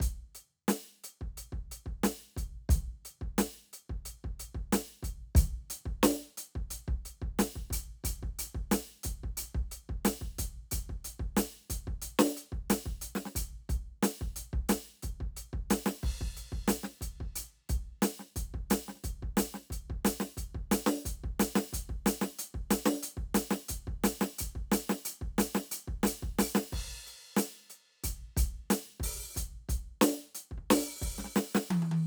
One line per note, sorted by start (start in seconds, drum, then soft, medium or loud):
0.01 closed hi-hat loud
0.01 kick medium
0.35 closed hi-hat medium
0.68 closed hi-hat loud
0.68 snare loud
1.04 closed hi-hat medium
1.21 kick medium
1.38 closed hi-hat medium
1.53 kick medium
1.72 closed hi-hat medium
1.86 kick medium
2.04 closed hi-hat loud
2.04 snare loud
2.37 closed hi-hat medium
2.37 kick medium
2.69 closed hi-hat loud
2.69 kick loud
3.05 closed hi-hat medium
3.22 kick medium
3.38 closed hi-hat loud
3.38 snare loud
3.73 closed hi-hat medium
3.90 kick medium
4.06 closed hi-hat medium
4.24 kick medium
4.40 closed hi-hat medium
4.55 kick medium
4.73 closed hi-hat loud
4.73 snare loud
5.03 closed hi-hat medium
5.03 kick medium
5.35 closed hi-hat loud
5.35 kick loud
5.70 closed hi-hat loud
5.86 kick medium
6.03 closed hi-hat loud
6.03 snare loud
6.38 closed hi-hat loud
6.56 kick medium
6.71 closed hi-hat loud
6.88 kick medium
7.06 closed hi-hat medium
7.22 kick medium
7.39 closed hi-hat loud
7.39 snare loud
7.56 kick medium
7.71 closed hi-hat loud
7.71 kick medium
8.04 closed hi-hat loud
8.04 kick medium
8.23 kick medium
8.39 closed hi-hat loud
8.55 kick medium
8.72 closed hi-hat loud
8.72 snare loud
9.04 closed hi-hat loud
9.04 kick medium
9.24 kick medium
9.38 closed hi-hat loud
9.55 kick medium
9.72 closed hi-hat medium
9.89 kick medium
10.05 closed hi-hat loud
10.05 snare loud
10.22 kick medium
10.39 closed hi-hat loud
10.39 kick medium
10.72 closed hi-hat loud
10.72 kick medium
10.90 kick medium
11.05 closed hi-hat loud
11.20 kick medium
11.37 closed hi-hat loud
11.37 snare loud
11.70 closed hi-hat loud
11.70 kick medium
11.88 kick medium
12.02 closed hi-hat loud
12.19 snare loud
12.37 closed hi-hat medium
12.52 kick medium
12.70 closed hi-hat loud
12.70 snare loud
12.86 kick medium
13.02 closed hi-hat loud
13.16 snare medium
13.26 snare medium
13.36 closed hi-hat loud
13.36 kick medium
13.70 closed hi-hat medium
13.70 kick medium
14.03 closed hi-hat loud
14.03 snare loud
14.21 kick medium
14.36 closed hi-hat loud
14.53 kick medium
14.69 closed hi-hat loud
14.69 snare loud
15.03 closed hi-hat medium
15.03 kick medium
15.21 kick medium
15.37 closed hi-hat medium
15.53 kick medium
15.71 closed hi-hat loud
15.71 snare loud
15.86 snare loud
16.03 kick medium
16.03 crash medium
16.21 kick medium
16.37 closed hi-hat medium
16.52 kick medium
16.68 closed hi-hat loud
16.68 snare loud
16.84 snare medium
17.01 closed hi-hat medium
17.01 kick medium
17.21 kick medium
17.36 closed hi-hat loud
17.69 closed hi-hat medium
17.69 kick medium
18.03 closed hi-hat loud
18.03 snare loud
18.20 snare soft
18.36 closed hi-hat medium
18.36 kick medium
18.54 kick medium
18.71 closed hi-hat loud
18.71 snare loud
18.89 snare medium
18.96 snare soft
19.04 closed hi-hat medium
19.04 kick medium
19.23 kick medium
19.37 closed hi-hat loud
19.37 snare loud
19.54 snare medium
19.71 closed hi-hat medium
19.71 kick medium
19.90 kick medium
20.05 closed hi-hat loud
20.05 snare loud
20.20 snare medium
20.37 closed hi-hat medium
20.37 kick medium
20.55 kick medium
20.72 closed hi-hat loud
20.72 snare loud
20.87 snare loud
21.06 closed hi-hat loud
21.06 kick medium
21.24 kick medium
21.40 closed hi-hat loud
21.40 snare loud
21.56 snare loud
21.73 closed hi-hat loud
21.73 kick medium
21.90 kick medium
22.06 closed hi-hat loud
22.06 snare loud
22.22 snare loud
22.39 closed hi-hat loud
22.55 kick medium
22.71 closed hi-hat loud
22.71 snare loud
22.86 snare loud
22.93 snare soft
23.03 closed hi-hat loud
23.17 kick medium
23.35 closed hi-hat loud
23.35 snare loud
23.51 snare loud
23.69 closed hi-hat loud
23.69 kick medium
23.88 kick medium
24.04 closed hi-hat loud
24.04 snare loud
24.21 snare loud
24.39 closed hi-hat loud
24.39 kick medium
24.56 kick medium
24.72 closed hi-hat loud
24.72 snare loud
24.90 snare loud
25.05 closed hi-hat loud
25.22 kick medium
25.39 closed hi-hat loud
25.39 snare loud
25.55 snare loud
25.72 closed hi-hat loud
25.88 kick medium
26.04 closed hi-hat loud
26.04 snare loud
26.23 kick medium
26.39 open hi-hat loud
26.39 snare loud
26.55 snare loud
26.73 kick medium
26.73 hi-hat pedal soft
26.73 crash medium
27.07 closed hi-hat medium
27.37 closed hi-hat loud
27.37 snare loud
27.70 closed hi-hat medium
28.04 closed hi-hat loud
28.04 kick medium
28.37 closed hi-hat loud
28.37 kick loud
28.71 closed hi-hat loud
28.71 snare loud
29.00 open hi-hat loud
29.00 kick medium
29.35 closed hi-hat loud
29.35 kick medium
29.35 hi-hat pedal medium
29.69 closed hi-hat medium
29.69 kick medium
30.02 closed hi-hat loud
30.02 snare loud
30.35 closed hi-hat loud
30.52 kick medium
30.58 kick soft
30.71 open hi-hat loud
30.71 snare loud
31.02 open hi-hat loud
31.02 kick medium
31.19 snare medium
31.25 snare soft
31.36 snare loud
31.55 snare loud
31.71 high tom loud
31.83 high tom medium
31.92 high tom medium